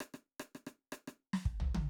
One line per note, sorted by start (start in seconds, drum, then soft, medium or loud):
0.00 cross-stick medium
0.14 cross-stick medium
0.40 cross-stick medium
0.55 cross-stick medium
0.67 cross-stick medium
0.92 cross-stick medium
1.08 cross-stick medium
1.33 snare medium
1.45 kick medium
1.60 floor tom loud
1.75 high tom loud